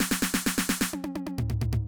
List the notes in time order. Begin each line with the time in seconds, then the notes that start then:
0.00 snare
0.11 snare
0.22 snare
0.34 snare
0.46 snare
0.58 snare
0.69 snare
0.81 snare
0.93 high tom
1.04 high tom
1.15 high tom
1.27 high tom
1.38 floor tom
1.50 floor tom
1.61 floor tom
1.73 floor tom